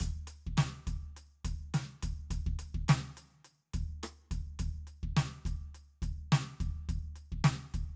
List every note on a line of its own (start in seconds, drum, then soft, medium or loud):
0.00 kick medium
0.00 percussion loud
0.27 percussion loud
0.47 kick soft
0.57 snare medium
0.57 percussion loud
0.87 kick medium
0.87 percussion medium
1.17 percussion medium
1.45 kick medium
1.45 percussion loud
1.74 snare medium
1.74 percussion loud
2.03 kick medium
2.03 percussion loud
2.31 kick medium
2.31 percussion loud
2.46 kick medium
2.59 percussion loud
2.74 kick medium
2.82 kick soft
2.88 snare loud
2.88 percussion loud
3.17 percussion medium
3.45 percussion medium
3.74 kick medium
3.74 percussion loud
4.03 cross-stick medium
4.03 percussion loud
4.31 kick medium
4.31 percussion medium
4.59 kick medium
4.59 percussion loud
4.87 percussion medium
5.03 kick medium
5.17 snare medium
5.17 percussion loud
5.45 kick medium
5.45 percussion medium
5.75 percussion medium
6.02 kick medium
6.02 percussion medium
6.32 snare loud
6.32 percussion loud
6.60 kick medium
6.60 percussion medium
6.89 kick medium
6.89 percussion medium
7.16 percussion medium
7.32 kick soft
7.44 snare loud
7.44 percussion loud
7.74 kick medium
7.74 percussion medium